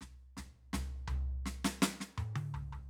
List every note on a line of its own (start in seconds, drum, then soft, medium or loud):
0.01 snare soft
0.01 floor tom soft
0.37 snare soft
0.37 floor tom medium
0.73 snare medium
0.73 floor tom medium
1.08 floor tom loud
1.46 snare medium
1.64 snare loud
1.82 snare loud
2.00 snare medium
2.18 mid tom loud
2.36 open hi-hat soft
2.36 high tom loud
2.54 floor tom medium
2.72 floor tom medium